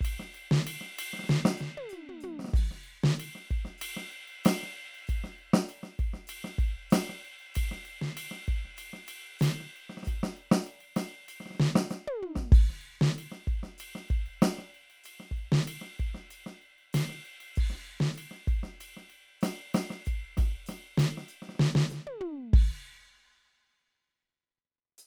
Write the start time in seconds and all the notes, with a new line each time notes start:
0.01 kick, hi-hat pedal, ride
0.19 snare
0.32 hi-hat pedal, ride
0.51 snare
0.62 hi-hat pedal
0.67 ride
0.81 snare
0.96 hi-hat pedal, ride
1.13 snare
1.19 snare
1.24 snare, hi-hat pedal
1.29 snare
1.45 snare
1.57 snare, hi-hat pedal
1.77 high tom
1.89 floor tom, hi-hat pedal
2.08 floor tom
2.20 floor tom, hi-hat pedal
2.39 snare
2.44 snare
2.48 snare
2.53 kick, snare, hi-hat pedal, crash
2.71 snare
2.83 ride
3.04 snare
3.14 hi-hat pedal
3.19 ride
3.35 snare
3.50 kick, ride
3.65 snare
3.78 hi-hat pedal, ride
3.96 snare
4.11 ride
4.27 ride
4.43 snare, hi-hat pedal, ride
4.63 snare
4.94 ride
5.07 kick, hi-hat pedal, ride
5.24 snare
5.38 ride
5.53 snare
5.68 hi-hat pedal, ride
5.83 snare
5.99 kick, ride
6.13 snare
6.27 hi-hat pedal, ride
6.44 snare
6.58 kick, ride
6.90 snare, hi-hat pedal, ride
7.09 snare
7.24 ride
7.39 ride
7.54 kick, hi-hat pedal, ride
7.71 snare
7.85 ride
8.01 snare
8.17 hi-hat pedal, ride
8.31 snare
8.47 kick, ride
8.65 snare
8.77 hi-hat pedal, ride
8.93 snare
9.07 hi-hat pedal, ride
9.39 snare, hi-hat pedal, ride
9.60 snare
9.76 ride
9.89 snare
9.97 snare
10.03 snare, hi-hat pedal
10.07 kick, ride
10.23 snare
10.36 ride
10.51 snare
10.62 hi-hat pedal
10.66 ride
10.80 ride
10.96 snare, ride
11.28 hi-hat pedal, ride
11.40 snare
11.46 snare
11.50 snare
11.55 snare
11.60 snare
11.75 snare
11.90 snare, hi-hat pedal
12.07 high tom
12.22 floor tom
12.35 kick, snare
12.52 kick, hi-hat pedal, crash
12.70 snare
12.81 ride
13.01 snare
13.13 hi-hat pedal
13.18 ride
13.32 snare
13.47 kick, ride
13.63 snare
13.78 hi-hat pedal, ride
13.95 snare
14.08 kick, ride
14.26 ride
14.42 snare, hi-hat pedal, ride
14.58 snare
14.74 ride
14.90 ride
15.04 hi-hat pedal, ride
15.20 snare
15.31 kick
15.36 ride
15.52 snare
15.62 hi-hat pedal
15.67 ride
15.81 snare
15.99 kick, ride
16.14 snare
16.30 hi-hat pedal, ride
16.46 snare
16.61 ride
16.78 ride
16.93 snare, hi-hat pedal, ride
17.09 snare
17.25 ride
17.40 ride
17.55 kick, hi-hat pedal, crash
17.70 snare
17.73 snare
17.86 ride
18.00 snare
18.13 hi-hat pedal
18.18 ride
18.31 snare
18.47 kick, ride
18.63 snare
18.80 hi-hat pedal, ride
18.97 snare
19.10 ride
19.41 snare, hi-hat pedal, ride
19.74 snare, ride
19.90 snare
20.05 kick, hi-hat pedal, ride
20.37 kick, snare, ride
20.66 snare, hi-hat pedal, ride
20.98 snare, ride
21.17 snare
21.28 hi-hat pedal, ride
21.42 snare
21.49 snare
21.55 snare
21.60 snare
21.75 snare
21.89 snare, hi-hat pedal
22.06 high tom
22.20 floor tom
22.53 kick, crash
24.98 hi-hat pedal